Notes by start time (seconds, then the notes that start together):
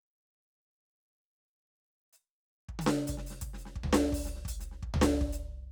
2.13 hi-hat pedal
2.68 kick
2.79 hi-hat pedal, high tom
2.86 snare
3.07 closed hi-hat, kick
3.17 snare
3.26 hi-hat pedal
3.30 snare
3.41 kick, closed hi-hat
3.53 snare
3.58 hi-hat pedal
3.65 snare
3.75 kick
3.83 floor tom
3.93 snare
4.12 open hi-hat, kick
4.24 snare, hi-hat pedal
4.35 snare
4.45 closed hi-hat, kick
4.60 snare, hi-hat pedal
4.71 snare
4.82 kick
4.94 floor tom
5.01 snare
5.21 kick
5.32 hi-hat pedal